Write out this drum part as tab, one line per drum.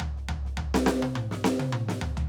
SD |-o-o-oo--oo--o--|
T1 |-------o---o----|
T2 |--------o---o---|
FT |o-o-o---------oo|